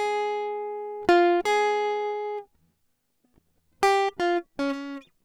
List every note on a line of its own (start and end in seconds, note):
0.00 1.14 G#4
1.10 1.45 F4
1.47 2.50 G#4
3.85 4.15 G4
4.22 4.47 F4
4.61 4.76 C#4